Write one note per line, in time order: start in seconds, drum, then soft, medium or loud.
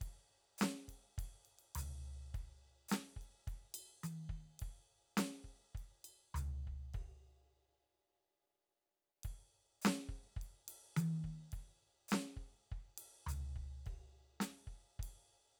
0.01 kick soft
0.01 ride soft
0.58 snare medium
0.58 hi-hat pedal medium
0.63 ride medium
0.88 kick soft
0.88 ride soft
1.18 kick soft
1.18 ride soft
1.45 ride soft
1.59 ride soft
1.75 floor tom medium
1.75 hi-hat pedal medium
1.75 ride medium
2.34 kick soft
2.34 ride soft
2.88 snare medium
2.88 hi-hat pedal medium
2.93 ride medium
3.16 kick soft
3.21 ride soft
3.47 kick soft
3.47 ride soft
3.74 ride bell medium
4.03 hi-hat pedal medium
4.03 high tom medium
4.29 kick soft
4.59 kick soft
4.59 ride soft
5.17 snare medium
5.17 hi-hat pedal medium
5.17 ride medium
5.44 kick soft
5.75 kick soft
5.75 ride soft
6.04 ride bell soft
6.34 floor tom medium
6.34 hi-hat pedal medium
6.67 kick soft
6.94 kick soft
6.94 crash soft
9.23 kick soft
9.23 ride soft
9.81 snare medium
9.81 hi-hat pedal medium
9.81 ride medium
10.09 kick soft
10.36 kick soft
10.41 ride soft
10.68 ride medium
10.96 hi-hat pedal medium
10.96 high tom loud
11.24 kick soft
11.52 kick soft
11.52 ride soft
12.08 snare medium
12.08 hi-hat pedal medium
12.08 ride soft
12.37 kick soft
12.72 kick soft
12.98 ride medium
13.26 floor tom medium
13.26 hi-hat pedal medium
13.56 kick soft
13.86 kick soft
13.86 crash soft
14.40 snare medium
14.40 hi-hat pedal medium
14.40 ride medium
14.67 kick soft
14.99 kick soft
14.99 ride soft